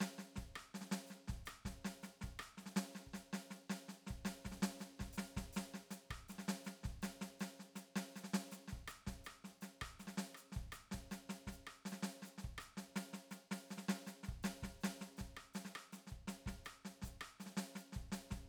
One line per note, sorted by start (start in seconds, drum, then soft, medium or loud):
0.01 hi-hat pedal soft
0.19 snare soft
0.36 kick soft
0.36 snare soft
0.56 cross-stick medium
0.75 snare soft
0.81 snare soft
0.92 snare medium
1.07 snare soft
1.07 hi-hat pedal soft
1.28 kick soft
1.28 snare soft
1.46 cross-stick medium
1.46 hi-hat pedal soft
1.65 kick soft
1.65 snare soft
1.85 snare medium
2.03 snare soft
2.03 hi-hat pedal soft
2.22 kick soft
2.22 snare soft
2.40 cross-stick medium
2.40 hi-hat pedal soft
2.58 snare soft
2.66 snare soft
2.76 snare medium
2.76 hi-hat pedal soft
2.95 snare soft
3.07 kick soft
3.14 snare soft
3.14 hi-hat pedal soft
3.33 snare medium
3.51 snare soft
3.70 snare medium
3.89 snare soft
3.89 hi-hat pedal soft
4.07 kick soft
4.07 snare soft
4.25 snare medium
4.25 hi-hat pedal soft
4.45 kick soft
4.45 snare soft
4.52 snare soft
4.63 snare medium
4.80 snare soft
4.80 hi-hat pedal soft
5.00 kick soft
5.00 snare soft
5.02 snare soft
5.13 hi-hat pedal soft
5.18 snare medium
5.37 kick soft
5.37 snare medium
5.53 snare medium
5.53 hi-hat pedal soft
5.74 snare soft
5.91 snare soft
5.91 hi-hat pedal medium
6.11 kick soft
6.11 cross-stick medium
6.29 snare soft
6.29 hi-hat pedal soft
6.39 snare soft
6.48 snare medium
6.65 snare soft
6.65 hi-hat pedal soft
6.84 kick soft
6.84 snare soft
7.02 snare medium
7.02 hi-hat pedal medium
7.22 snare medium
7.40 snare medium
7.40 hi-hat pedal soft
7.60 snare soft
7.76 snare soft
7.76 hi-hat pedal soft
7.96 snare medium
8.16 snare soft
8.16 hi-hat pedal soft
8.24 snare soft
8.34 snare medium
8.52 snare soft
8.52 hi-hat pedal medium
8.68 snare soft
8.73 kick soft
8.88 cross-stick medium
8.88 hi-hat pedal soft
9.07 kick soft
9.07 snare soft
9.24 cross-stick medium
9.24 hi-hat pedal soft
9.44 snare soft
9.61 snare soft
9.61 hi-hat pedal soft
9.82 kick soft
9.82 cross-stick medium
10.00 snare soft
10.00 hi-hat pedal soft
10.07 snare soft
10.18 snare medium
10.35 cross-stick soft
10.35 hi-hat pedal soft
10.52 snare soft
10.57 kick soft
10.72 cross-stick medium
10.72 hi-hat pedal soft
10.92 kick soft
10.92 snare medium
11.11 snare soft
11.11 hi-hat pedal soft
11.30 snare medium
11.47 kick soft
11.47 snare soft
11.52 hi-hat pedal soft
11.67 cross-stick medium
11.86 snare soft
11.86 hi-hat pedal soft
11.92 snare soft
12.03 snare medium
12.22 snare soft
12.22 hi-hat pedal soft
12.38 snare soft
12.45 kick soft
12.58 cross-stick medium
12.58 hi-hat pedal soft
12.77 snare soft
12.96 snare medium
12.96 hi-hat pedal soft
13.14 snare soft
13.31 snare soft
13.31 hi-hat pedal soft
13.51 snare medium
13.70 snare soft
13.70 hi-hat pedal soft
13.78 snare soft
13.89 snare medium
14.07 snare soft
14.07 hi-hat pedal soft
14.24 snare soft
14.29 kick soft
14.43 snare medium
14.43 hi-hat pedal soft
14.63 kick soft
14.63 snare soft
14.81 snare medium
14.81 hi-hat pedal soft
15.01 snare soft
15.17 kick soft
15.17 snare soft
15.17 hi-hat pedal soft
15.37 cross-stick medium
15.54 snare medium
15.54 hi-hat pedal soft
15.65 snare soft
15.76 cross-stick medium
15.93 snare soft
15.93 hi-hat pedal soft
16.07 snare soft
16.12 kick soft
16.28 snare medium
16.28 hi-hat pedal soft
16.47 kick soft
16.47 snare soft
16.65 cross-stick medium
16.65 hi-hat pedal soft
16.85 snare soft
17.02 kick soft
17.02 snare soft
17.02 hi-hat pedal soft
17.21 cross-stick medium
17.40 snare soft
17.40 hi-hat pedal soft
17.46 snare soft
17.57 snare medium
17.76 snare soft
17.76 hi-hat pedal soft
17.93 kick soft
17.93 snare soft
18.12 snare medium
18.12 hi-hat pedal soft
18.31 kick soft
18.31 snare soft